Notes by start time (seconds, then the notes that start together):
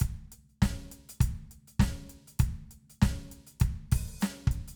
0.01 kick, closed hi-hat
0.32 closed hi-hat
0.49 closed hi-hat
0.62 kick, snare
0.92 closed hi-hat
1.09 closed hi-hat
1.21 kick, closed hi-hat
1.51 closed hi-hat
1.68 closed hi-hat
1.80 kick, snare
2.10 closed hi-hat
2.28 closed hi-hat
2.40 kick, closed hi-hat
2.71 closed hi-hat
2.90 closed hi-hat
3.02 kick, snare
3.32 closed hi-hat
3.47 closed hi-hat
3.60 kick, closed hi-hat
3.92 kick, open hi-hat
4.21 closed hi-hat, snare, hi-hat pedal
4.47 kick
4.51 closed hi-hat
4.68 closed hi-hat